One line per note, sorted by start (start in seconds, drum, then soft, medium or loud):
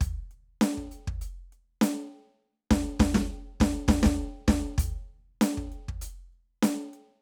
0.01 closed hi-hat medium
0.01 kick loud
0.31 closed hi-hat soft
0.61 closed hi-hat loud
0.61 snare loud
0.78 kick soft
0.92 closed hi-hat soft
1.08 kick medium
1.22 closed hi-hat medium
1.53 closed hi-hat soft
1.82 closed hi-hat loud
1.82 snare loud
2.71 kick loud
2.71 snare loud
3.00 kick loud
3.00 snare loud
3.15 kick medium
3.15 snare loud
3.60 kick loud
3.60 snare loud
3.88 kick loud
3.88 snare loud
4.03 kick loud
4.03 snare loud
4.24 cross-stick soft
4.48 kick loud
4.48 snare loud
4.78 closed hi-hat loud
4.78 kick loud
5.41 closed hi-hat loud
5.41 snare loud
5.58 kick medium
5.72 closed hi-hat soft
5.89 kick medium
6.02 closed hi-hat loud
6.33 closed hi-hat soft
6.63 closed hi-hat loud
6.63 snare loud
6.94 closed hi-hat soft